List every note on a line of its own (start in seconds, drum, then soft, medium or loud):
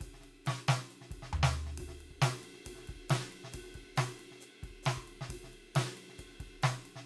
0.01 kick soft
0.01 hi-hat pedal medium
0.01 ride medium
0.07 kick soft
0.14 snare soft
0.20 snare soft
0.20 ride soft
0.45 snare loud
0.45 hi-hat pedal medium
0.45 ride medium
0.68 snare loud
0.68 ride medium
0.90 hi-hat pedal soft
0.90 ride soft
1.01 snare soft
1.11 kick soft
1.11 ride medium
1.18 kick soft
1.23 snare medium
1.33 floor tom loud
1.33 hi-hat pedal soft
1.43 snare loud
1.54 ride medium
1.66 snare soft
1.78 kick soft
1.78 hi-hat pedal medium
1.78 ride loud
1.89 snare soft
2.01 ride soft
2.11 kick soft
2.22 snare loud
2.22 hi-hat pedal soft
2.22 ride loud
2.44 ride medium
2.54 snare soft
2.65 kick soft
2.65 hi-hat pedal medium
2.65 ride loud
2.75 snare soft
2.79 snare soft
2.88 kick soft
2.88 ride medium
2.95 kick soft
3.09 snare loud
3.09 hi-hat pedal medium
3.09 ride loud
3.33 ride soft
3.44 snare soft
3.53 kick soft
3.53 hi-hat pedal medium
3.53 ride loud
3.64 snare soft
3.69 snare soft
3.75 kick soft
3.75 ride soft
3.97 snare loud
3.97 hi-hat pedal medium
3.97 ride loud
4.20 ride medium
4.32 snare soft
4.41 hi-hat pedal medium
4.41 ride soft
4.49 snare soft
4.55 snare soft
4.58 snare soft
4.63 kick soft
4.63 ride medium
4.70 kick soft
4.83 snare loud
4.83 hi-hat pedal medium
4.83 ride loud
4.97 kick soft
5.08 ride soft
5.21 snare medium
5.30 kick soft
5.30 hi-hat pedal medium
5.30 ride loud
5.44 snare soft
5.51 snare soft
5.51 ride soft
5.76 snare loud
5.76 hi-hat pedal medium
5.76 ride loud
5.98 ride medium
6.10 snare soft
6.18 kick soft
6.18 hi-hat pedal medium
6.18 ride medium
6.30 snare soft
6.40 kick soft
6.40 ride medium
6.62 snare loud
6.62 hi-hat pedal medium
6.62 ride medium
6.71 snare soft
6.86 ride medium
6.96 snare medium